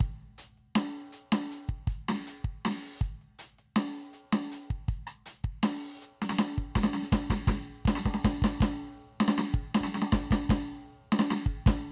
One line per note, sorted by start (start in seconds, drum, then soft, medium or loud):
0.01 closed hi-hat loud
0.01 kick medium
0.39 closed hi-hat loud
0.58 closed hi-hat soft
0.76 closed hi-hat loud
0.76 snare loud
1.13 closed hi-hat medium
1.33 snare loud
1.51 closed hi-hat loud
1.69 kick soft
1.69 closed hi-hat soft
1.88 closed hi-hat loud
1.88 kick medium
2.09 snare loud
2.27 closed hi-hat loud
2.45 kick soft
2.45 closed hi-hat soft
2.65 open hi-hat loud
2.65 snare loud
3.01 closed hi-hat loud
3.01 kick medium
3.01 hi-hat pedal medium
3.22 closed hi-hat soft
3.39 closed hi-hat loud
3.59 closed hi-hat soft
3.77 closed hi-hat loud
3.77 snare loud
3.95 closed hi-hat soft
4.14 closed hi-hat medium
4.33 snare loud
4.52 closed hi-hat loud
4.71 kick soft
4.71 closed hi-hat medium
4.89 closed hi-hat loud
4.89 kick medium
5.08 cross-stick medium
5.26 closed hi-hat loud
5.44 kick soft
5.44 closed hi-hat soft
5.63 open hi-hat loud
5.63 snare loud
6.02 hi-hat pedal medium
6.22 snare medium
6.30 snare loud
6.37 snare loud
6.37 hi-hat pedal medium
6.58 kick medium
6.76 kick medium
6.76 snare loud
6.84 snare loud
6.94 snare loud
7.03 snare medium
7.13 kick medium
7.13 snare loud
7.30 kick medium
7.30 snare loud
7.48 kick loud
7.48 snare loud
7.86 kick medium
7.86 snare loud
7.96 snare loud
8.06 kick medium
8.06 snare loud
8.15 snare loud
8.25 kick medium
8.25 snare loud
8.43 kick medium
8.43 snare loud
8.61 kick medium
8.61 snare loud
9.21 snare loud
9.28 snare loud
9.38 snare loud
9.54 kick medium
9.75 snare loud
9.81 kick soft
9.81 snare loud
9.95 snare loud
10.02 snare loud
10.13 kick medium
10.13 snare loud
10.31 kick medium
10.31 snare loud
10.50 kick medium
10.50 snare loud
11.13 snare loud
11.20 snare loud
11.31 snare loud
11.47 kick medium
11.67 kick loud
11.67 snare loud